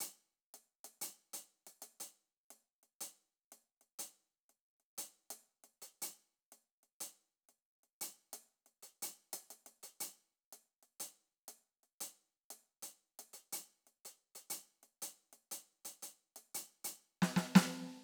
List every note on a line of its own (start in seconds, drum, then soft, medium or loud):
0.01 closed hi-hat loud
0.55 closed hi-hat medium
0.85 closed hi-hat medium
1.02 closed hi-hat loud
1.34 closed hi-hat loud
1.67 open hi-hat medium
1.83 closed hi-hat medium
2.01 closed hi-hat loud
2.51 open hi-hat soft
2.84 closed hi-hat soft
3.01 closed hi-hat loud
3.53 closed hi-hat soft
3.82 closed hi-hat soft
4.00 closed hi-hat loud
4.50 closed hi-hat soft
4.81 closed hi-hat soft
4.99 closed hi-hat loud
5.31 closed hi-hat medium
5.64 closed hi-hat soft
5.82 closed hi-hat medium
6.03 closed hi-hat loud
6.53 closed hi-hat soft
6.84 closed hi-hat soft
7.01 closed hi-hat loud
7.49 closed hi-hat soft
7.84 closed hi-hat soft
8.02 closed hi-hat loud
8.34 closed hi-hat medium
8.67 closed hi-hat soft
8.83 closed hi-hat medium
9.03 closed hi-hat loud
9.34 closed hi-hat loud
9.51 closed hi-hat medium
9.67 closed hi-hat soft
9.84 closed hi-hat medium
10.01 closed hi-hat loud
10.53 closed hi-hat medium
10.83 open hi-hat soft
11.01 closed hi-hat loud
11.49 closed hi-hat medium
11.84 open hi-hat soft
12.01 closed hi-hat loud
12.51 closed hi-hat medium
12.83 closed hi-hat medium
13.20 closed hi-hat medium
13.34 closed hi-hat medium
13.53 closed hi-hat loud
13.87 closed hi-hat soft
14.06 closed hi-hat medium
14.36 closed hi-hat medium
14.51 closed hi-hat loud
14.84 closed hi-hat soft
15.03 closed hi-hat loud
15.33 closed hi-hat soft
15.52 closed hi-hat loud
15.86 closed hi-hat medium
16.03 closed hi-hat medium
16.37 closed hi-hat medium
16.55 closed hi-hat loud
16.85 closed hi-hat loud
17.23 snare medium
17.37 snare medium
17.56 snare loud